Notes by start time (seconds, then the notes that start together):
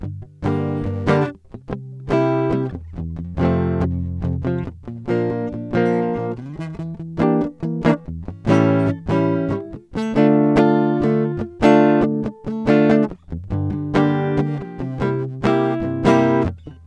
0.03 G2 D3
0.44 G2 D3 G3 A#3
0.51 D4
0.86 G2
1.09 D3 G3 A#3 D4
1.56 C3
1.70 C3 G3
2.09 C3 G3
2.14 E4 G4
2.52 C3 G3
2.73 E2
2.95 E2
3.18 F2
3.39 F2 C3 F3
3.44 A3 C4
3.82 F2 C3
4.24 E2 C3
4.46 C3 F3
4.90 A#2
5.07 A#2 F3 A#3
5.13 D4
5.32 A#2 F3
5.54 A#2 F3
5.73 A#2 F3
5.79 A#3
6.15 A#2 F3
6.39 C3
6.63 D#3
6.82 E3
7.02 E3
7.19 E3 A#3
7.23 D4 G4
7.43 A#3
7.65 E3 A#3
7.87 E3 A#3 D4
8.08 E2
8.24 F2
8.47 A2 E3 G3
8.52 C#4 E4 A4
8.89 E3
9.09 A2 E3 G3
9.14 C#4 E4
9.23 C#4
9.50 G#2 G3
9.98 A3
10.16 D3 A3 D4 F4
10.57 D3 A3 D4 F4 A4
11.03 D3 A3 D4
11.63 D3 A3 D4 F4
11.68 A4
11.90 D4
12.03 D3 A3 D4
12.28 G#3
12.49 A3
12.67 D3 A3 D4
12.71 F4
12.91 A3 D4 F4
13.34 E2
13.52 G2 D3 G3
13.72 G2 D3
13.96 D3 G3 A#3 D4
14.00 G4
14.39 D3 G3 A#3
14.59 A#3
14.64 F3
14.81 C3 F#3
15.02 C3 G3 A#3 E4
15.44 C3 G3 A#3 E4
15.49 G4
15.74 G3
15.82 G2 C3
16.05 C3 G3 A#3
16.09 E4 G4
16.46 F#2